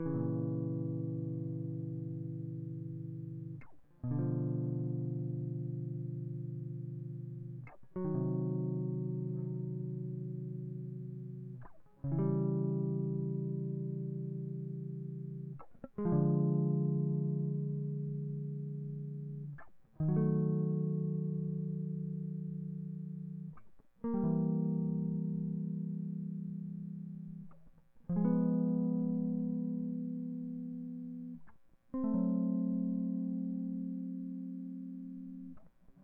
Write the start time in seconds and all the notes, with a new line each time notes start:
0.00 E3
0.07 C#3
0.16 A#2
4.05 B2
4.12 D3
4.19 F3
7.97 F#3
8.06 D#3
8.16 C3
12.05 C#3
12.12 E3
12.19 G3
15.99 G#3
16.06 F3
16.13 D3
20.01 D#3
20.09 F#3
20.17 A3
24.04 A#3
24.15 G3
24.25 E3
28.10 F3
28.17 G#3
28.25 B3
31.94 C4
32.05 A3
32.15 F#3